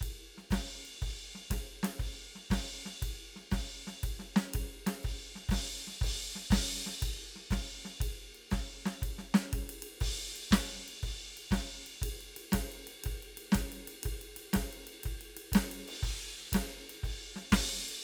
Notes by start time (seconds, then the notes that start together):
0.01 kick, ride
0.38 snare
0.51 kick, snare, hi-hat pedal, ride
0.85 ride
1.02 kick, ride
1.35 snare
1.50 kick, snare, hi-hat pedal, ride
1.83 snare, ride
1.99 kick, ride
2.36 snare
2.50 kick, snare, hi-hat pedal, ride
2.86 snare
3.02 kick, ride
3.36 snare
3.51 kick, snare, hi-hat pedal, ride
3.87 snare
4.03 kick, ride
4.19 snare
4.36 snare
4.53 kick, hi-hat pedal, ride
4.87 snare, ride
5.03 kick, ride
5.36 snare
5.49 kick, snare, hi-hat pedal, ride
5.87 snare
5.93 snare
6.01 kick, ride
6.36 snare
6.50 kick, snare, hi-hat pedal, ride
6.86 snare
7.02 kick, ride
7.36 snare
7.51 kick, snare, hi-hat pedal, ride
7.85 snare
8.01 kick, ride
8.35 ride
8.50 kick, snare, hi-hat pedal, ride
8.86 snare
9.02 kick, ride
9.19 snare
9.34 snare
9.51 kick, hi-hat pedal, ride
9.69 ride
9.82 ride
10.01 kick, ride
10.36 ride
10.49 kick, snare, hi-hat pedal
10.53 ride
10.88 ride
11.03 kick, ride
11.37 ride
11.48 kick, snare, hi-hat pedal, ride
11.87 ride
12.02 kick, ride
12.21 ride
12.37 ride
12.52 kick, snare, hi-hat pedal, ride
12.72 ride
12.87 ride
13.04 kick, ride
13.23 ride
13.38 ride
13.51 kick, snare, hi-hat pedal, ride
13.72 ride
13.88 ride
14.03 kick, ride
14.22 ride
14.37 ride
14.53 kick, snare, hi-hat pedal, ride
14.73 ride
14.87 ride
15.04 kick, ride
15.21 ride
15.37 ride
15.52 kick, snare, hi-hat pedal, ride
15.72 ride
15.88 ride
16.03 kick, crash
16.52 kick, snare, hi-hat pedal, ride
16.90 ride
17.04 kick, ride
17.36 snare
17.50 kick, snare, hi-hat pedal, ride
17.89 ride